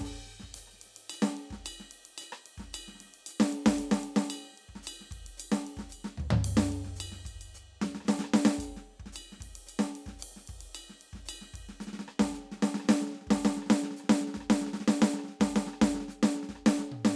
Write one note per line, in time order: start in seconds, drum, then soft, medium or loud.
0.01 kick soft
0.01 crash medium
0.05 hi-hat pedal medium
0.40 kick soft
0.40 snare soft
0.54 hi-hat pedal medium
0.54 ride medium
0.67 cross-stick soft
0.73 snare soft
0.81 ride medium
0.86 snare soft
0.96 ride medium
1.10 hi-hat pedal medium
1.10 ride bell loud
1.22 snare loud
1.37 ride soft
1.50 kick soft
1.50 snare soft
1.65 hi-hat pedal medium
1.65 ride bell loud
1.80 snare soft
1.91 ride medium
2.05 ride medium
2.18 hi-hat pedal medium
2.18 ride bell loud
2.32 cross-stick medium
2.46 ride medium
2.57 kick soft
2.57 snare soft
2.73 hi-hat pedal medium
2.73 ride bell loud
2.88 snare soft
2.95 snare soft
3.00 snare soft
3.00 ride medium
3.04 snare soft
3.08 snare soft
3.14 ride medium
3.26 hi-hat pedal medium
3.26 ride bell medium
3.40 snare loud
3.53 ride medium
3.66 kick soft
3.66 snare loud
3.78 hi-hat pedal medium
3.78 ride medium
3.91 snare loud
4.03 ride medium
4.16 snare loud
4.30 hi-hat pedal medium
4.30 ride bell loud
4.58 ride soft
4.69 kick soft
4.75 snare soft
4.83 hi-hat pedal medium
4.87 ride bell loud
5.01 snare soft
5.11 kick soft
5.11 ride medium
5.17 kick soft
5.24 snare soft
5.24 ride medium
5.28 snare soft
5.37 hi-hat pedal medium
5.37 ride bell loud
5.52 snare medium
5.67 ride medium
5.77 kick soft
5.77 snare soft
5.89 hi-hat pedal medium
5.89 ride bell medium
6.04 snare medium
6.17 kick soft
6.17 floor tom medium
6.30 floor tom loud
6.44 hi-hat pedal medium
6.44 ride loud
6.57 snare loud
6.72 ride medium
6.84 kick soft
6.84 snare soft
6.95 hi-hat pedal medium
7.00 ride bell loud
7.12 snare soft
7.19 cross-stick soft
7.25 kick soft
7.25 ride bell medium
7.41 ride bell medium
7.54 hi-hat pedal medium
7.81 snare medium
7.95 snare soft
8.00 cross-stick soft
8.08 snare loud
8.08 hi-hat pedal medium
8.19 snare medium
8.24 cross-stick medium
8.34 snare loud
8.45 snare loud
8.50 cross-stick medium
8.58 kick soft
8.58 hi-hat pedal medium
8.58 ride bell medium
8.76 snare soft
8.89 ride soft
8.99 kick soft
9.06 snare soft
9.12 hi-hat pedal medium
9.12 ride bell loud
9.32 snare soft
9.38 kick soft
9.38 snare soft
9.42 snare soft
9.42 ride medium
9.45 snare soft
9.51 snare soft
9.55 ride medium
9.67 hi-hat pedal medium
9.67 ride bell medium
9.79 snare medium
9.95 ride medium
10.06 kick soft
10.06 snare soft
10.19 hi-hat pedal medium
10.19 ride loud
10.36 snare soft
10.45 kick soft
10.45 cross-stick soft
10.45 ride medium
10.61 ride medium
10.74 hi-hat pedal medium
10.74 ride bell loud
10.89 snare soft
11.01 ride medium
11.13 kick soft
11.13 snare soft
11.20 kick soft
11.26 hi-hat pedal medium
11.26 ride bell loud
11.41 snare soft
11.54 kick soft
11.54 ride medium
11.59 kick soft
11.69 snare soft
11.80 snare soft
11.80 hi-hat pedal medium
11.87 snare soft
11.93 snare soft
11.99 snare medium
12.08 cross-stick medium
12.19 kick soft
12.19 snare loud
12.24 cross-stick medium
12.33 snare soft
12.33 hi-hat pedal medium
12.39 snare soft
12.44 snare soft
12.52 snare soft
12.57 snare soft
12.62 snare loud
12.74 snare medium
12.80 cross-stick medium
12.88 snare loud
12.88 hi-hat pedal medium
13.01 snare soft
13.07 snare soft
13.15 snare soft
13.21 snare soft
13.27 kick soft
13.27 snare soft
13.30 snare loud
13.42 snare loud
13.42 hi-hat pedal medium
13.57 snare soft
13.62 cross-stick medium
13.66 snare soft
13.70 snare loud
13.83 snare medium
13.91 snare soft
13.96 cross-stick soft
13.96 hi-hat pedal medium
14.09 snare loud
14.21 snare soft
14.27 snare soft
14.34 kick soft
14.34 snare medium
14.41 cross-stick medium
14.50 snare loud
14.50 hi-hat pedal medium
14.61 snare medium
14.66 snare soft
14.73 snare medium
14.80 snare soft
14.88 snare loud
15.02 snare loud
15.02 hi-hat pedal medium
15.14 snare soft
15.19 cross-stick medium
15.23 snare soft
15.28 snare soft
15.40 kick soft
15.40 snare loud
15.54 snare loud
15.54 hi-hat pedal medium
15.66 snare medium
15.73 cross-stick medium
15.81 kick soft
15.81 snare loud
15.94 snare medium
16.00 snare soft
16.08 snare soft
16.08 hi-hat pedal medium
16.23 snare loud
16.35 snare soft
16.43 snare soft
16.49 kick soft
16.49 snare soft
16.55 cross-stick medium
16.66 snare loud
16.66 hi-hat pedal medium
16.79 snare medium
16.92 mid tom medium
17.05 snare loud